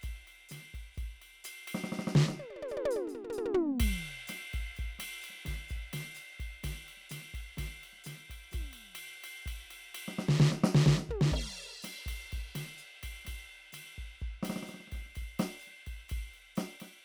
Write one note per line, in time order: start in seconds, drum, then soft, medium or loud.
0.01 kick soft
0.01 hi-hat pedal soft
0.01 ride soft
0.08 kick soft
0.27 ride soft
0.49 snare soft
0.49 hi-hat pedal medium
0.49 ride medium
0.74 kick soft
0.74 ride soft
0.94 kick soft
0.94 hi-hat pedal soft
0.94 ride soft
1.03 kick soft
1.21 ride soft
1.44 hi-hat pedal loud
1.44 ride medium
1.67 ride medium
1.74 snare medium
1.84 snare soft
1.92 snare soft
1.99 snare soft
2.07 snare medium
2.15 snare loud
2.28 snare medium
2.39 high tom medium
2.50 high tom soft
2.56 high tom soft
2.62 high tom medium
2.68 hi-hat pedal medium
2.68 high tom medium
2.76 high tom medium
2.85 high tom loud
2.91 hi-hat pedal loud
2.95 high tom medium
3.06 hi-hat pedal medium
3.06 mid tom soft
3.14 mid tom medium
3.24 mid tom medium
3.29 hi-hat pedal medium
3.29 mid tom medium
3.37 mid tom medium
3.45 mid tom medium
3.54 floor tom loud
3.79 kick medium
3.79 ride loud
3.87 kick soft
4.27 snare soft
4.27 hi-hat pedal loud
4.27 ride medium
4.53 kick soft
4.53 ride soft
4.59 kick soft
4.75 kick soft
4.75 hi-hat pedal soft
4.75 ride soft
4.84 kick soft
4.99 snare soft
4.99 ride loud
5.21 hi-hat pedal medium
5.21 ride medium
5.30 snare soft
5.45 kick soft
5.45 snare soft
5.45 ride medium
5.53 kick soft
5.68 kick soft
5.68 hi-hat pedal medium
5.68 ride soft
5.76 kick soft
5.76 snare soft
5.93 snare soft
5.93 ride medium
6.14 hi-hat pedal medium
6.14 ride soft
6.39 kick soft
6.39 ride soft
6.63 kick soft
6.63 snare soft
6.63 hi-hat pedal medium
6.63 ride medium
6.69 kick soft
6.88 ride soft
6.97 snare soft
7.09 snare soft
7.09 hi-hat pedal medium
7.09 ride medium
7.34 kick soft
7.34 ride soft
7.56 kick soft
7.56 snare soft
7.56 hi-hat pedal soft
7.56 ride medium
7.63 kick soft
7.83 ride soft
7.93 snare soft
8.04 snare soft
8.04 hi-hat pedal medium
8.04 ride medium
8.29 kick soft
8.29 ride soft
8.51 kick soft
8.51 snare soft
8.51 hi-hat pedal medium
8.51 ride medium
8.51 floor tom soft
8.59 kick soft
8.59 snare soft
8.65 snare soft
8.73 ride medium
8.95 ride medium
9.23 ride medium
9.46 kick soft
9.46 ride medium
9.70 ride medium
9.94 ride medium
10.08 snare soft
10.18 snare medium
10.28 snare loud
10.38 kick soft
10.38 snare loud
10.52 snare medium
10.63 snare loud
10.74 snare loud
10.86 kick soft
10.86 snare loud
10.98 snare soft
11.09 kick soft
11.09 mid tom medium
11.14 kick soft
11.21 snare loud
11.31 kick soft
11.31 crash medium
11.82 snare soft
11.82 hi-hat pedal medium
11.82 ride medium
12.06 kick soft
12.06 ride medium
12.11 kick soft
12.32 kick soft
12.32 snare soft
12.32 ride soft
12.38 kick soft
12.55 snare soft
12.55 ride medium
12.78 hi-hat pedal medium
13.03 kick soft
13.03 ride medium
13.25 kick soft
13.25 snare soft
13.25 hi-hat pedal soft
13.25 ride medium
13.32 kick soft
13.72 snare soft
13.72 hi-hat pedal medium
13.72 ride medium
13.98 kick soft
13.98 ride soft
14.19 kick soft
14.19 hi-hat pedal soft
14.43 snare medium
14.43 ride medium
14.49 snare soft
14.56 snare soft
14.62 snare soft
14.67 snare soft
14.67 hi-hat pedal medium
14.67 ride soft
14.74 snare soft
14.80 snare soft
14.87 snare soft
14.91 kick soft
14.91 snare soft
14.91 ride soft
14.97 kick soft
14.97 snare soft
15.05 snare soft
15.15 kick soft
15.15 hi-hat pedal soft
15.15 ride soft
15.22 kick soft
15.39 snare medium
15.39 ride medium
15.59 hi-hat pedal medium
15.59 ride soft
15.67 snare soft
15.86 kick soft
15.86 ride soft
16.08 kick soft
16.08 hi-hat pedal soft
16.08 ride medium
16.17 kick soft
16.33 ride soft
16.55 snare medium
16.55 hi-hat pedal medium
16.55 ride medium
16.80 snare soft
16.80 ride medium